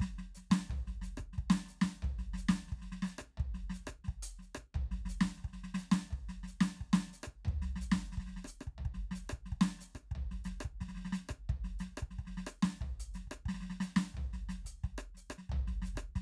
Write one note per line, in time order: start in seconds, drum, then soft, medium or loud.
0.01 kick soft
0.01 snare medium
0.19 snare soft
0.36 snare soft
0.36 hi-hat pedal medium
0.51 kick soft
0.51 snare loud
0.59 snare soft
0.71 kick soft
0.71 floor tom medium
0.88 snare soft
1.03 snare soft
1.03 hi-hat pedal soft
1.18 kick soft
1.18 cross-stick medium
1.34 snare soft
1.39 kick soft
1.51 snare loud
1.67 snare soft
1.67 hi-hat pedal soft
1.82 kick soft
1.82 snare medium
2.03 kick soft
2.03 floor tom medium
2.20 snare soft
2.35 snare medium
2.39 hi-hat pedal medium
2.50 kick soft
2.50 snare loud
2.69 kick soft
2.69 snare soft
2.79 snare soft
2.83 snare soft
2.93 snare medium
3.03 snare medium
3.08 hi-hat pedal soft
3.19 kick soft
3.19 cross-stick medium
3.38 kick soft
3.38 floor tom medium
3.55 snare soft
3.71 snare soft
3.75 hi-hat pedal soft
3.88 kick soft
3.88 cross-stick medium
4.05 kick soft
4.05 snare soft
4.24 closed hi-hat loud
4.40 snare soft
4.40 hi-hat pedal soft
4.56 kick soft
4.56 cross-stick medium
4.75 kick soft
4.75 floor tom medium
4.92 snare soft
5.06 snare soft
5.06 hi-hat pedal medium
5.22 kick soft
5.22 snare medium
5.38 snare soft
5.45 kick soft
5.45 snare soft
5.54 snare soft
5.65 snare soft
5.75 snare medium
5.75 hi-hat pedal medium
5.93 kick soft
5.93 snare loud
6.12 kick soft
6.12 floor tom medium
6.30 snare soft
6.44 snare soft
6.49 hi-hat pedal soft
6.62 kick soft
6.62 snare loud
6.78 snare soft
6.82 kick soft
6.94 snare loud
7.09 snare soft
7.14 hi-hat pedal medium
7.24 kick soft
7.24 cross-stick medium
7.46 kick soft
7.46 floor tom loud
7.63 snare soft
7.77 snare soft
7.82 hi-hat pedal medium
7.93 kick soft
7.93 snare medium
8.13 snare soft
8.18 kick soft
8.18 snare soft
8.27 snare soft
8.29 snare soft
8.46 cross-stick medium
8.46 hi-hat pedal medium
8.62 cross-stick medium
8.68 kick soft
8.79 floor tom medium
8.86 kick soft
8.95 snare soft
9.12 snare soft
9.16 hi-hat pedal medium
9.30 kick soft
9.30 cross-stick medium
9.47 snare soft
9.53 kick soft
9.62 snare loud
9.80 snare soft
9.80 hi-hat pedal medium
9.96 kick soft
9.96 cross-stick medium
10.12 kick soft
10.12 floor tom medium
10.32 snare soft
10.45 snare soft
10.45 hi-hat pedal soft
10.62 cross-stick medium
10.66 kick soft
10.82 kick soft
10.82 snare soft
10.89 snare soft
10.96 snare soft
10.97 snare soft
11.13 snare medium
11.13 hi-hat pedal soft
11.30 kick soft
11.30 cross-stick medium
11.50 kick medium
11.50 floor tom medium
11.65 snare soft
11.80 snare medium
11.80 hi-hat pedal soft
11.98 cross-stick medium
12.03 kick soft
12.12 snare soft
12.20 kick soft
12.20 snare soft
12.26 snare soft
12.28 snare soft
12.38 snare soft
12.48 cross-stick medium
12.48 hi-hat pedal medium
12.64 kick soft
12.64 snare medium
12.82 kick soft
12.82 floor tom medium
13.01 open hi-hat medium
13.15 snare soft
13.15 hi-hat pedal soft
13.28 kick soft
13.32 cross-stick medium
13.46 kick soft
13.46 snare medium
13.55 snare soft
13.61 snare soft
13.63 snare soft
13.71 snare soft
13.81 snare medium
13.81 hi-hat pedal medium
13.97 kick soft
13.97 snare loud
14.15 kick soft
14.15 floor tom medium
14.34 snare soft
14.50 snare medium
14.50 hi-hat pedal soft
14.66 closed hi-hat medium
14.66 kick soft
14.85 kick soft
14.85 snare soft
14.99 cross-stick medium
15.15 snare soft
15.15 hi-hat pedal soft
15.31 kick soft
15.31 cross-stick medium
15.39 snare soft
15.50 kick soft
15.50 floor tom loud
15.68 snare soft
15.83 snare soft
15.83 hi-hat pedal soft
15.96 kick soft
15.96 cross-stick medium
16.16 kick soft
16.16 snare soft